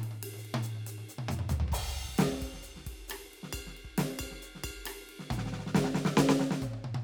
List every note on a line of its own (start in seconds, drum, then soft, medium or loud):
0.03 ride medium
0.11 hi-hat pedal soft
0.11 high tom soft
0.23 ride loud
0.34 high tom medium
0.38 hi-hat pedal medium
0.45 ride soft
0.54 high tom loud
0.63 hi-hat pedal medium
0.63 ride soft
0.75 high tom soft
0.87 hi-hat pedal medium
0.87 ride medium
0.98 high tom soft
1.09 hi-hat pedal medium
1.19 high tom loud
1.29 hi-hat pedal medium
1.29 mid tom loud
1.39 mid tom medium
1.49 floor tom loud
1.49 hi-hat pedal medium
1.60 floor tom medium
1.68 kick medium
1.68 floor tom soft
1.73 hi-hat pedal loud
1.73 crash loud
1.87 kick soft
2.09 kick soft
2.14 kick soft
2.18 snare loud
2.18 hi-hat pedal medium
2.18 ride loud
2.42 kick soft
2.42 ride medium
2.49 kick soft
2.54 snare soft
2.63 hi-hat pedal medium
2.63 ride soft
2.76 snare soft
2.87 kick soft
2.87 ride medium
2.93 kick soft
3.08 cross-stick medium
3.08 hi-hat pedal medium
3.08 ride loud
3.34 ride medium
3.43 snare soft
3.53 kick soft
3.53 hi-hat pedal medium
3.53 ride bell loud
3.60 kick soft
3.67 snare soft
3.77 ride soft
3.85 kick soft
3.98 snare loud
3.98 hi-hat pedal medium
3.98 ride loud
4.19 kick soft
4.19 ride bell loud
4.27 kick soft
4.31 snare soft
4.42 hi-hat pedal medium
4.42 ride soft
4.55 snare soft
4.64 kick soft
4.64 ride bell loud
4.70 kick soft
4.86 cross-stick medium
4.86 hi-hat pedal medium
4.86 ride loud
5.09 ride medium
5.19 snare soft
5.31 kick soft
5.31 hi-hat pedal medium
5.31 high tom loud
5.38 kick soft
5.38 snare medium
5.46 snare soft
5.53 snare medium
5.59 snare soft
5.67 snare medium
5.75 kick soft
5.75 snare loud
5.79 hi-hat pedal medium
5.85 snare medium
6.05 snare loud
6.17 kick soft
6.17 snare loud
6.17 hi-hat pedal soft
6.29 snare loud
6.40 snare medium
6.51 snare medium
6.62 kick soft
6.62 hi-hat pedal medium
6.62 high tom loud
6.74 high tom medium
6.84 high tom medium
6.95 high tom loud